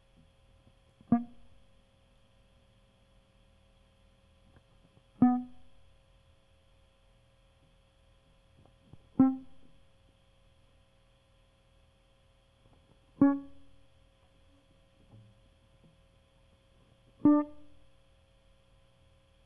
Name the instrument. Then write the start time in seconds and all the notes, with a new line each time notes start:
electric guitar
1.12 A#3
5.22 B3
9.20 C4
13.22 C#4
17.25 D4